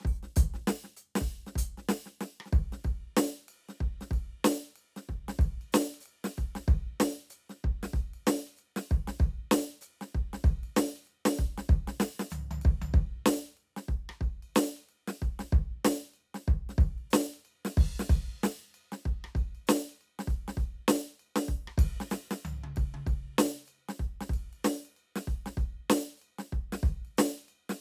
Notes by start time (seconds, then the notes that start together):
0.01 snare
0.05 kick, open hi-hat
0.16 hi-hat pedal
0.23 snare
0.36 closed hi-hat, kick
0.54 snare
0.59 kick
0.68 snare
0.84 snare
0.97 closed hi-hat
1.16 snare
1.21 kick
1.27 closed hi-hat, hi-hat pedal
1.47 snare
1.56 closed hi-hat, kick
1.78 kick, snare
1.89 snare
2.06 snare
2.21 snare
2.41 cross-stick
2.46 snare
2.53 kick, ride
2.73 snare
2.85 kick, ride
3.17 snare, hi-hat pedal
3.49 ride
3.69 snare
3.81 kick
4.01 snare
4.11 kick, ride
4.45 snare, hi-hat pedal
4.76 ride
4.97 snare
5.09 kick
5.29 snare
5.39 kick, ride
5.61 ride bell
5.73 snare, hi-hat pedal
5.94 ride
6.01 hi-hat pedal
6.06 ride
6.25 snare
6.38 kick, ride
6.56 snare
6.68 kick, ride bell
7.00 snare, hi-hat pedal
7.30 hi-hat pedal, ride
7.50 snare
7.64 kick
7.83 snare
7.94 kick, ride bell
8.14 ride
8.27 snare, hi-hat pedal
8.47 ride bell
8.57 hi-hat pedal, ride
8.77 snare
8.90 kick, ride
9.08 snare
9.20 kick, ride bell
9.52 snare, hi-hat pedal
9.81 hi-hat pedal, ride
10.01 snare
10.15 kick
10.34 snare
10.44 kick, ride bell
10.64 ride
10.77 snare, hi-hat pedal
10.96 ride bell
11.04 hi-hat pedal, ride
11.26 snare
11.39 kick
11.58 snare
11.69 kick, ride bell
11.88 snare
12.00 snare, hi-hat pedal
12.20 snare
12.31 floor tom, hi-hat pedal
12.51 floor tom
12.62 kick, ride
12.82 floor tom
12.94 kick, ride bell
13.26 snare, hi-hat pedal
13.57 ride
13.77 snare
13.89 kick
14.09 cross-stick
14.21 kick, ride bell
14.43 ride bell
14.56 snare, hi-hat pedal
14.77 ride bell
14.89 ride
15.08 snare
15.22 kick, ride
15.40 snare
15.51 kick, ride bell
15.85 snare, hi-hat pedal
16.14 ride bell
16.35 snare
16.48 kick
16.69 snare
16.78 kick, ride
16.98 kick, ride
17.11 snare, hi-hat pedal
17.34 ride
17.45 ride bell
17.65 snare
17.78 kick, crash
18.00 snare
18.10 kick, ride bell
18.44 snare, hi-hat pedal
18.75 ride bell
18.92 snare
19.06 kick
19.24 cross-stick
19.35 kick, ride bell
19.55 ride bell
19.67 snare, hi-hat pedal
19.90 ride bell
20.01 ride bell
20.19 snare
20.28 kick, ride
20.48 snare
20.57 kick, ride bell
20.88 snare, hi-hat pedal
21.20 ride bell
21.36 snare
21.49 kick
21.68 cross-stick
21.78 kick, ride
22.01 snare
22.11 snare, hi-hat pedal
22.31 snare
22.38 hi-hat pedal
22.45 floor tom
22.64 mid tom
22.76 kick, ride
22.94 mid tom
23.07 kick, ride
23.39 snare, hi-hat pedal
23.66 hi-hat pedal, ride bell
23.89 snare
24.00 kick
24.21 snare
24.30 kick
24.34 ride
24.53 ride
24.64 snare, hi-hat pedal
24.85 ride bell
24.97 ride bell
25.16 snare
25.28 kick, ride bell
25.46 snare
25.58 kick, ride bell
25.90 snare, hi-hat pedal
26.17 hi-hat pedal
26.22 ride bell
26.39 snare
26.53 kick
26.73 snare
26.83 kick, ride bell
27.05 ride
27.18 snare, hi-hat pedal
27.38 ride bell
27.49 ride bell
27.70 snare